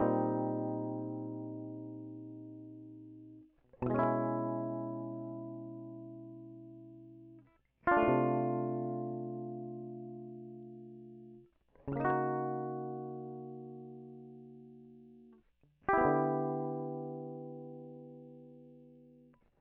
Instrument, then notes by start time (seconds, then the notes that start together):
electric guitar
0.00 A#2 D3
3.83 B2
3.88 E3 G#3
3.94 C#4 E4
3.99 E4
4.04 A#4
7.87 F4
7.91 D4
7.97 A3
8.05 E3
8.09 C3 E4
11.89 C#3
11.96 A#3 D#4
12.05 F#4
12.10 C5
15.89 G4
15.93 E4
15.98 B3
16.06 D3